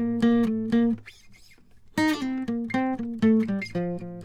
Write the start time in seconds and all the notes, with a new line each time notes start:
0.00 A#3
0.24 A#3
0.46 A3
0.74 A#3
1.99 D#4
2.11 D4
2.22 C4
2.49 A#3
2.75 C4
3.01 A#3
3.24 A3
3.50 G3
3.77 F3
4.03 F3